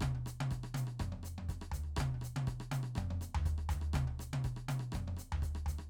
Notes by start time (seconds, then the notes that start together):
0.01 kick, cross-stick, hi-hat pedal, high tom
0.15 high tom
0.26 cross-stick, hi-hat pedal
0.41 high tom
0.51 kick, cross-stick, hi-hat pedal
0.64 cross-stick
0.75 hi-hat pedal, high tom
0.87 cross-stick
1.00 kick, cross-stick, hi-hat pedal, mid tom
1.12 mid tom
1.23 cross-stick, hi-hat pedal
1.38 mid tom
1.49 kick, cross-stick, hi-hat pedal
1.62 cross-stick
1.72 floor tom, hi-hat pedal
1.84 cross-stick
1.97 kick, cross-stick, hi-hat pedal, high tom
2.15 high tom
2.22 cross-stick, hi-hat pedal
2.36 high tom
2.48 kick, cross-stick, hi-hat pedal
2.60 cross-stick
2.72 hi-hat pedal, high tom
2.83 cross-stick
2.96 kick, cross-stick, hi-hat pedal, mid tom
3.11 mid tom
3.21 cross-stick, hi-hat pedal
3.35 floor tom
3.46 kick, cross-stick, hi-hat pedal
3.58 cross-stick
3.69 floor tom, hi-hat pedal
3.82 cross-stick
3.94 kick, cross-stick, hi-hat pedal, high tom
4.08 high tom
4.12 high tom
4.20 cross-stick, hi-hat pedal
4.34 high tom
4.44 kick, cross-stick, hi-hat pedal
4.57 cross-stick
4.69 hi-hat pedal, high tom
4.80 cross-stick
4.92 kick, cross-stick, hi-hat pedal, mid tom
5.08 mid tom
5.17 cross-stick, hi-hat pedal
5.33 floor tom
5.43 kick, cross-stick, hi-hat pedal
5.55 cross-stick
5.66 floor tom, hi-hat pedal
5.79 cross-stick